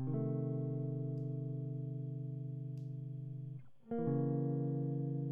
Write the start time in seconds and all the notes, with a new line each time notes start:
0.00 C3
0.09 D#3
0.14 A3
3.92 A#3
3.99 E3
4.08 C#3